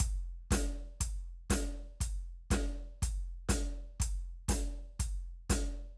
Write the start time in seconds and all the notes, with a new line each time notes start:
0.00 kick, open hi-hat
0.51 kick, snare, open hi-hat
1.00 kick, closed hi-hat
1.50 kick, snare, open hi-hat
2.00 kick, open hi-hat
2.50 kick, snare, open hi-hat
3.02 kick, open hi-hat
3.49 open hi-hat, kick, snare
4.00 kick, closed hi-hat
4.48 kick, snare, open hi-hat
4.99 kick, open hi-hat
5.49 open hi-hat, kick, snare